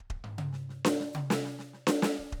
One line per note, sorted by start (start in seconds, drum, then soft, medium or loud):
0.00 kick soft
0.10 kick medium
0.24 mid tom loud
0.38 high tom loud
0.53 snare soft
0.69 snare soft
0.85 snare loud
1.00 snare soft
1.13 hi-hat pedal soft
1.13 high tom loud
1.30 snare loud
1.45 snare soft
1.59 snare soft
1.74 snare soft
1.87 snare loud
2.02 snare loud
2.19 kick soft
2.32 kick medium